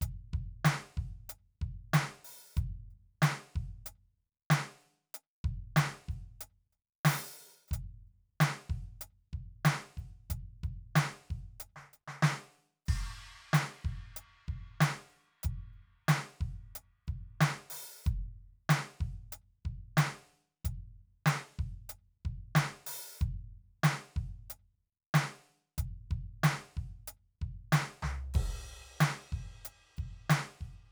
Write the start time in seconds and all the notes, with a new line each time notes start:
0.02 closed hi-hat, kick
0.34 kick, closed hi-hat
0.65 closed hi-hat, snare
0.98 kick
1.30 closed hi-hat
1.62 kick, closed hi-hat
1.94 closed hi-hat, snare
2.25 open hi-hat
2.57 closed hi-hat, kick, hi-hat pedal
2.91 closed hi-hat
3.23 closed hi-hat, snare
3.55 kick, closed hi-hat
3.87 closed hi-hat
4.51 closed hi-hat, snare
4.82 closed hi-hat
5.15 closed hi-hat
5.45 kick, closed hi-hat
5.77 closed hi-hat, snare
5.83 snare
6.09 kick, closed hi-hat
6.41 closed hi-hat
6.73 closed hi-hat
7.06 open hi-hat, snare
7.68 kick, hi-hat pedal
7.74 closed hi-hat
8.08 closed hi-hat
8.41 closed hi-hat, snare
8.70 kick
9.02 closed hi-hat
9.34 kick, closed hi-hat
9.65 closed hi-hat, snare
9.73 snare
9.98 kick, closed hi-hat
10.31 closed hi-hat, kick
10.64 kick, closed hi-hat
10.96 closed hi-hat, snare
11.30 kick, closed hi-hat
11.61 closed hi-hat
11.77 snare
11.94 closed hi-hat
12.08 snare
12.23 snare
12.86 kick, hi-hat pedal, crash
13.54 closed hi-hat, snare
13.85 kick
14.17 closed hi-hat
14.48 kick, closed hi-hat
14.81 closed hi-hat, snare
15.10 closed hi-hat
15.44 closed hi-hat, kick
15.74 closed hi-hat
16.09 closed hi-hat, snare
16.41 kick, closed hi-hat
16.76 closed hi-hat
17.08 kick, closed hi-hat
17.41 closed hi-hat, snare
17.71 open hi-hat, snare
18.05 closed hi-hat, kick, hi-hat pedal
18.70 closed hi-hat, snare
19.01 kick, closed hi-hat
19.33 closed hi-hat
19.65 kick, closed hi-hat
19.98 closed hi-hat, snare
20.65 closed hi-hat, kick
21.26 closed hi-hat, snare
21.59 kick
21.90 closed hi-hat
22.26 kick
22.56 closed hi-hat, snare
22.87 open hi-hat, snare
23.19 closed hi-hat, kick, hi-hat pedal
23.84 closed hi-hat, snare
24.17 kick
24.51 closed hi-hat
25.15 closed hi-hat, snare
25.79 closed hi-hat, kick
26.11 kick, closed hi-hat
26.44 closed hi-hat, snare
26.77 kick
27.08 closed hi-hat
27.42 kick
27.73 closed hi-hat, snare
28.03 snare, floor tom
28.35 kick, crash
29.01 closed hi-hat, snare
29.33 kick
29.66 closed hi-hat
29.97 kick, closed hi-hat
30.30 closed hi-hat, snare
30.61 kick